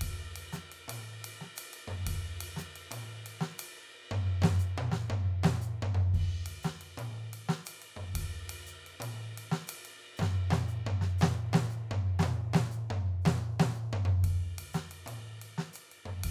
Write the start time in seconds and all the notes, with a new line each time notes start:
0.01 kick, ride
0.35 ride
0.52 snare, hi-hat pedal
0.72 ride
0.88 mid tom, ride
1.02 hi-hat pedal
1.24 ride
1.41 snare
1.56 hi-hat pedal, ride
1.73 ride
1.87 floor tom
2.06 kick, ride
2.40 ride
2.56 snare, hi-hat pedal
2.76 ride
2.91 mid tom, ride
3.06 hi-hat pedal
3.26 ride
3.41 snare
3.58 hi-hat pedal, ride
4.11 floor tom
4.42 snare, floor tom
4.59 hi-hat pedal
4.78 mid tom
4.92 snare
5.10 floor tom
5.43 snare, mid tom
5.61 hi-hat pedal
5.82 floor tom
5.94 floor tom
6.14 kick, ride
6.46 ride
6.63 snare, hi-hat pedal
6.81 ride
6.97 mid tom, ride
7.33 ride
7.49 snare
7.65 hi-hat pedal, ride
7.82 ride
7.96 floor tom
8.14 kick, ride
8.49 ride
8.66 hi-hat pedal
8.86 ride
9.00 mid tom, ride
9.37 ride
9.51 snare
9.67 hi-hat pedal, ride
9.85 ride
10.17 floor tom, hi-hat pedal
10.21 snare
10.50 snare, mid tom
10.68 hi-hat pedal
10.86 floor tom
11.01 snare
11.18 snare, hi-hat pedal, mid tom
11.53 snare, mid tom
11.70 hi-hat pedal
11.91 floor tom
12.19 snare, hi-hat pedal, mid tom
12.53 snare, mid tom
12.71 hi-hat pedal
12.90 floor tom
13.21 hi-hat pedal, mid tom
13.26 snare
13.59 snare, mid tom
13.74 hi-hat pedal
13.93 floor tom
14.05 floor tom
14.23 kick, ride
14.52 ride
14.58 ride
14.73 snare, hi-hat pedal
14.91 ride
15.06 mid tom, ride
15.41 ride
15.58 snare
15.73 hi-hat pedal, ride
15.91 ride
16.04 kick, floor tom
16.23 kick, ride